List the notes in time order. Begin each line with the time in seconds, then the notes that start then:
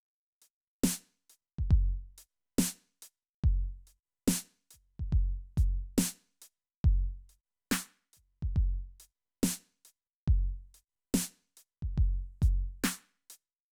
0.42 closed hi-hat
0.84 snare
1.30 closed hi-hat
1.59 kick
1.71 kick
2.18 closed hi-hat
2.58 snare
3.02 closed hi-hat
3.44 kick, crash
3.87 closed hi-hat
4.28 snare
4.71 kick, closed hi-hat
4.99 kick
5.13 kick
5.17 crash
5.57 kick, closed hi-hat
5.98 snare
6.42 closed hi-hat
6.84 kick, crash
7.29 closed hi-hat
7.71 snare
8.13 kick, closed hi-hat
8.43 kick
8.56 kick
8.62 ride
9.00 closed hi-hat
9.43 snare
9.85 closed hi-hat
10.28 kick, crash
10.74 closed hi-hat
11.14 snare
11.57 closed hi-hat
11.82 kick
11.98 kick
12.02 crash, ride
12.42 kick, closed hi-hat
12.84 snare
13.30 closed hi-hat